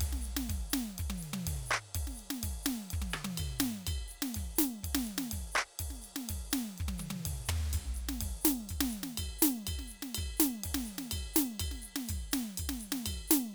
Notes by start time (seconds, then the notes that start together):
0.01 kick, ride
0.07 kick
0.13 snare
0.22 hi-hat pedal
0.26 ride
0.37 snare
0.50 kick, ride
0.56 kick
0.70 snare, hi-hat pedal
0.99 kick, ride
1.06 kick
1.10 high tom
1.18 hi-hat pedal
1.23 ride
1.34 open hi-hat, high tom
1.47 kick, ride
1.53 kick
1.66 hi-hat pedal
1.71 percussion
1.95 kick, ride
2.02 kick
2.08 snare
2.15 hi-hat pedal
2.20 ride
2.31 snare
2.44 kick, ride
2.50 kick
2.63 snare, hi-hat pedal
2.91 kick, ride
3.00 kick, high tom
3.11 cross-stick, hi-hat pedal
3.25 high tom
3.38 kick, ride bell
3.46 kick
3.59 snare, hi-hat pedal
3.87 kick, ride bell
3.95 kick
4.08 hi-hat pedal, ride
4.23 snare
4.35 kick, ride
4.43 kick
4.56 snare, hi-hat pedal
4.84 kick, ride
4.95 snare
5.04 hi-hat pedal, ride
5.18 snare
5.32 kick, ride
5.39 kick
5.52 percussion, hi-hat pedal
5.80 kick, ride
5.86 kick
5.91 snare
6.02 hi-hat pedal, ride
6.16 snare
6.29 kick, ride
6.36 kick
6.51 snare, hi-hat pedal
6.78 kick, ride
6.87 kick, high tom
6.99 hi-hat pedal, high tom
7.11 closed hi-hat, high tom
7.26 kick, ride
7.33 kick
7.46 floor tom, hi-hat pedal
7.73 kick, ride bell
7.81 kick
7.85 snare
7.94 hi-hat pedal, ride
8.09 snare
8.21 kick, ride
8.42 snare, hi-hat pedal
8.69 kick, ride bell
8.81 snare
8.90 hi-hat pedal, ride
9.04 snare
9.18 kick, ride bell
9.25 kick
9.39 snare, hi-hat pedal
9.67 kick, ride bell
9.74 kick
9.79 snare
9.88 hi-hat pedal
9.92 ride
10.03 snare
10.15 kick, ride bell
10.37 snare, hi-hat pedal
10.64 kick, ride
10.71 kick, snare
10.85 hi-hat pedal, ride
10.99 snare
11.12 kick, ride bell
11.19 kick
11.34 snare, hi-hat pedal
11.60 kick, ride bell
11.67 kick
11.72 snare
11.82 hi-hat pedal, ride
11.96 snare
12.05 hi-hat pedal, ride bell
12.10 kick
12.16 kick
12.32 snare, hi-hat pedal
12.54 hi-hat pedal, ride bell
12.59 kick
12.69 snare
12.80 hi-hat pedal, ride
12.93 snare
13.06 kick, ride bell
13.13 kick
13.28 snare, hi-hat pedal